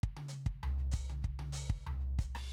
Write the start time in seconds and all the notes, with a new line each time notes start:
0.03 kick
0.17 high tom
0.29 snare, hi-hat pedal
0.46 kick
0.63 floor tom
0.78 snare
0.92 kick, snare, hi-hat pedal
1.10 high tom
1.22 kick, snare
1.39 high tom
1.53 snare, hi-hat pedal
1.70 kick
1.87 floor tom
2.00 snare
2.19 kick, hi-hat pedal
2.35 cross-stick, ride